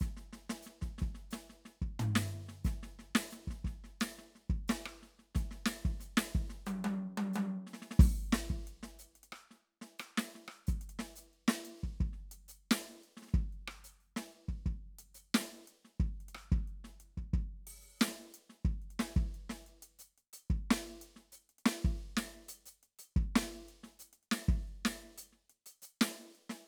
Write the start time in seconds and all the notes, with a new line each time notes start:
0.01 kick, snare, hi-hat pedal
0.18 snare
0.33 snare
0.50 snare
0.63 snare, hi-hat pedal
0.82 kick, snare
0.99 kick, snare
1.15 snare
1.32 snare, hi-hat pedal
1.50 snare
1.66 snare
1.83 kick
2.00 floor tom, hi-hat pedal
2.16 snare
2.49 snare
2.65 kick, snare, hi-hat pedal
2.84 snare
3.00 snare
3.16 snare
3.31 snare, hi-hat pedal
3.48 kick, snare
3.65 kick, snare
3.85 snare
4.01 snare, hi-hat pedal
4.19 snare
4.36 snare
4.51 kick
4.69 snare, hi-hat pedal
4.87 cross-stick
5.03 snare
5.20 snare
5.36 kick, snare, hi-hat pedal
5.52 snare
5.67 snare
5.86 kick, snare
6.01 snare, hi-hat pedal
6.18 snare
6.36 kick, snare
6.50 snare
6.67 hi-hat pedal, high tom
6.85 high tom
7.18 high tom
7.34 hi-hat pedal, high tom
7.68 snare
7.74 snare
7.83 snare
7.92 snare
8.00 open hi-hat, kick
8.33 snare, hi-hat pedal
8.51 kick
8.68 closed hi-hat
8.84 snare
9.00 hi-hat pedal
9.16 closed hi-hat
9.24 closed hi-hat
9.33 cross-stick
9.52 snare
9.82 snare
10.00 cross-stick, hi-hat pedal
10.18 snare
10.36 snare
10.49 cross-stick
10.68 kick, hi-hat pedal
10.82 closed hi-hat
10.90 closed hi-hat
11.00 snare
11.17 hi-hat pedal
11.34 closed hi-hat
11.49 snare
11.66 closed hi-hat
11.84 kick
12.01 kick
12.14 snare
12.32 closed hi-hat
12.49 hi-hat pedal
12.72 snare
13.04 closed hi-hat
13.18 snare
13.23 snare
13.29 snare
13.35 kick
13.53 closed hi-hat
13.68 cross-stick
13.85 hi-hat pedal
14.01 open hi-hat
14.17 snare
14.49 kick
14.67 kick
14.99 closed hi-hat
15.15 hi-hat pedal
15.35 snare
15.41 snare
15.68 closed hi-hat
15.85 snare
16.01 kick
16.21 closed hi-hat
16.29 closed hi-hat
16.36 cross-stick
16.53 kick
16.68 closed hi-hat
16.85 snare
17.01 closed hi-hat
17.18 kick
17.34 kick
17.68 open hi-hat
18.00 snare, hi-hat pedal
18.08 snare
18.35 closed hi-hat
18.50 snare
18.66 kick
18.83 closed hi-hat
18.91 closed hi-hat
19.00 snare
19.17 kick
19.35 closed hi-hat
19.50 snare
19.67 closed hi-hat
19.83 closed hi-hat
20.00 hi-hat pedal
20.18 closed hi-hat
20.34 closed hi-hat
20.51 kick
20.71 snare
20.86 snare
21.02 closed hi-hat
21.17 snare
21.33 hi-hat pedal
21.50 closed hi-hat
21.59 closed hi-hat
21.67 snare
21.85 kick
22.01 closed hi-hat
22.18 snare
22.27 snare
22.49 closed hi-hat
22.67 hi-hat pedal
22.84 closed hi-hat
23.00 closed hi-hat
23.17 kick
23.36 snare
23.44 snare
23.69 closed hi-hat
23.84 snare
24.00 hi-hat pedal
24.14 closed hi-hat
24.24 closed hi-hat
24.32 snare
24.39 snare
24.49 kick
24.68 closed hi-hat
24.86 snare
25.18 closed hi-hat
25.33 snare
25.50 closed hi-hat
25.67 closed hi-hat
25.83 hi-hat pedal
26.02 snare
26.09 snare
26.36 closed hi-hat
26.50 snare